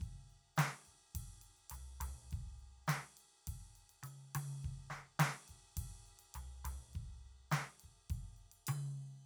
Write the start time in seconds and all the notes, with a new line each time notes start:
0.01 kick, ride
0.30 ride
0.56 snare, hi-hat pedal, ride
0.85 kick, ride
1.15 kick, ride
1.42 ride
1.57 ride
1.70 floor tom, hi-hat pedal, ride
2.00 floor tom, ride
2.31 kick, ride
2.59 ride
2.87 snare, hi-hat pedal, ride
3.17 ride
3.47 kick, ride
3.75 ride
3.89 ride
4.03 hi-hat pedal, high tom, ride
4.35 high tom, ride
4.63 kick, ride
4.90 snare, ride
5.19 snare, hi-hat pedal, ride
5.48 kick, ride
5.77 kick, ride
6.06 ride
6.19 ride
6.34 floor tom, hi-hat pedal, ride
6.65 floor tom, ride
6.93 kick, ride
7.51 snare, hi-hat pedal, ride
7.80 kick, ride
8.10 kick, ride
8.36 ride
8.52 ride
8.67 hi-hat pedal, high tom, ride bell